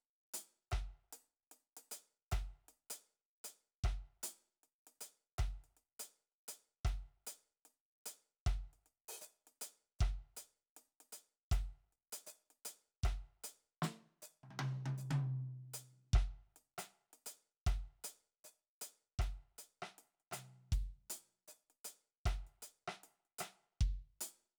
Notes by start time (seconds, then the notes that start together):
0.34 closed hi-hat
0.72 kick, cross-stick, closed hi-hat
1.13 closed hi-hat
1.52 closed hi-hat
1.77 closed hi-hat
1.92 closed hi-hat
2.32 kick, cross-stick, closed hi-hat
2.69 closed hi-hat
2.90 closed hi-hat
3.45 open hi-hat
3.84 kick, cross-stick, closed hi-hat
4.23 closed hi-hat
4.64 closed hi-hat
4.87 closed hi-hat
5.01 closed hi-hat
5.39 kick, cross-stick, closed hi-hat
5.64 closed hi-hat
5.77 closed hi-hat
6.00 closed hi-hat
6.32 closed hi-hat
6.48 open hi-hat
6.85 kick, cross-stick, closed hi-hat
7.27 closed hi-hat
7.66 closed hi-hat
8.06 closed hi-hat
8.47 kick, cross-stick, closed hi-hat
8.73 closed hi-hat
8.86 closed hi-hat
9.09 open hi-hat
9.21 hi-hat pedal
9.47 closed hi-hat
9.62 open hi-hat
9.99 kick, cross-stick, closed hi-hat, hi-hat pedal
10.37 closed hi-hat
10.77 closed hi-hat
11.01 closed hi-hat
11.13 closed hi-hat
11.52 kick, cross-stick, closed hi-hat
11.93 closed hi-hat
12.13 open hi-hat
12.27 hi-hat pedal
12.51 closed hi-hat
12.65 open hi-hat
13.03 kick, cross-stick, closed hi-hat, hi-hat pedal
13.44 closed hi-hat
13.82 snare, closed hi-hat
14.22 hi-hat pedal
14.44 high tom
14.51 high tom
14.59 high tom
14.86 high tom
14.98 hi-hat pedal
15.11 high tom
15.74 closed hi-hat
16.14 kick, cross-stick
16.56 closed hi-hat
16.78 closed hi-hat, cross-stick
17.13 closed hi-hat
17.26 closed hi-hat
17.67 kick, cross-stick, closed hi-hat
18.04 open hi-hat
18.45 closed hi-hat, hi-hat pedal
18.82 closed hi-hat
19.19 kick, cross-stick, closed hi-hat
19.58 closed hi-hat
19.82 cross-stick
19.99 closed hi-hat
20.20 closed hi-hat
20.32 closed hi-hat, cross-stick, high tom
20.72 kick, closed hi-hat
21.10 open hi-hat
21.48 hi-hat pedal
21.52 closed hi-hat
21.70 closed hi-hat
21.85 closed hi-hat
22.26 kick, cross-stick, closed hi-hat
22.47 closed hi-hat
22.62 closed hi-hat
22.88 cross-stick
23.04 closed hi-hat
23.25 closed hi-hat
23.39 closed hi-hat, cross-stick
23.81 kick, closed hi-hat
24.21 open hi-hat